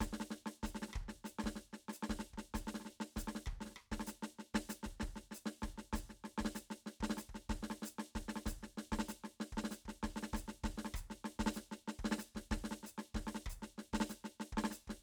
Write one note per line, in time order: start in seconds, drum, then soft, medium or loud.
0.01 kick soft
0.01 snare medium
0.01 hi-hat pedal medium
0.13 snare soft
0.21 snare soft
0.31 snare soft
0.46 snare soft
0.64 kick soft
0.64 snare soft
0.64 hi-hat pedal soft
0.75 snare soft
0.83 snare soft
0.89 snare soft
0.94 kick soft
0.94 cross-stick medium
1.04 kick soft
1.09 snare soft
1.25 snare soft
1.25 hi-hat pedal soft
1.39 snare soft
1.44 kick soft
1.44 snare medium
1.56 snare soft
1.73 snare soft
1.89 snare soft
1.93 hi-hat pedal medium
2.03 snare soft
2.10 kick soft
2.10 snare medium
2.20 snare soft
2.34 kick soft
2.38 snare soft
2.55 kick soft
2.55 snare soft
2.55 hi-hat pedal medium
2.68 snare soft
2.75 snare soft
2.81 snare soft
2.86 snare soft
3.01 snare soft
3.17 kick soft
3.17 snare soft
3.17 hi-hat pedal medium
3.28 snare soft
3.36 snare soft
3.47 kick soft
3.47 cross-stick soft
3.56 kick soft
3.61 snare soft
3.66 snare soft
3.71 snare soft
3.77 cross-stick soft
3.92 kick soft
3.92 snare soft
4.00 snare soft
4.07 snare soft
4.07 hi-hat pedal medium
4.23 snare soft
4.39 snare soft
4.55 kick soft
4.55 snare medium
4.70 snare soft
4.70 hi-hat pedal medium
4.84 kick soft
4.84 snare soft
5.01 kick soft
5.01 snare soft
5.16 snare soft
5.32 snare soft
5.32 hi-hat pedal medium
5.46 snare medium
5.63 kick soft
5.63 snare soft
5.78 snare soft
5.93 kick soft
5.93 snare medium
5.93 hi-hat pedal medium
6.10 snare soft
6.25 snare soft
6.38 kick soft
6.38 snare medium
6.45 snare medium
6.56 snare soft
6.56 hi-hat pedal medium
6.71 snare soft
6.87 snare soft
7.01 kick soft
7.01 snare medium
7.10 snare medium
7.18 snare soft
7.18 hi-hat pedal medium
7.30 kick soft
7.35 snare soft
7.50 kick soft
7.50 snare soft
7.63 snare soft
7.71 snare soft
7.83 snare soft
7.83 hi-hat pedal medium
7.99 snare soft
8.16 kick soft
8.16 snare soft
8.29 snare soft
8.36 snare soft
8.46 kick soft
8.46 snare soft
8.46 hi-hat pedal medium
8.63 snare soft
8.78 snare soft
8.92 kick soft
8.92 snare medium
8.99 snare medium
9.09 snare soft
9.09 hi-hat pedal medium
9.24 snare soft
9.41 snare soft
9.53 kick soft
9.58 snare medium
9.64 snare medium
9.71 snare soft
9.71 hi-hat pedal medium
9.86 kick soft
9.86 snare soft
10.04 kick soft
10.04 snare medium
10.17 snare soft
10.23 snare soft
10.34 kick soft
10.34 snare soft
10.34 hi-hat pedal medium
10.48 snare soft
10.64 kick soft
10.64 snare soft
10.78 snare soft
10.85 snare soft
10.95 kick soft
10.95 cross-stick medium
10.95 hi-hat pedal medium
11.11 snare soft
11.25 snare soft
11.40 kick soft
11.40 snare medium
11.47 snare medium
11.54 snare soft
11.54 hi-hat pedal medium
11.72 snare soft
11.88 snare soft
11.99 kick soft
12.05 snare medium
12.12 snare medium
12.19 snare soft
12.19 hi-hat pedal medium
12.35 kick soft
12.35 snare soft
12.52 kick soft
12.52 snare medium
12.64 snare soft
12.72 snare soft
12.84 snare soft
12.84 hi-hat pedal medium
12.98 snare soft
13.15 kick soft
13.15 snare soft
13.27 snare soft
13.35 snare soft
13.47 kick soft
13.47 cross-stick soft
13.47 hi-hat pedal medium
13.63 snare soft
13.79 snare soft
13.94 kick soft
13.94 snare medium
14.01 snare medium
14.10 snare soft
14.10 hi-hat pedal medium
14.25 snare soft
14.40 snare soft
14.53 kick soft
14.58 snare medium
14.64 snare medium
14.71 snare soft
14.71 hi-hat pedal medium
14.88 kick soft
14.88 snare soft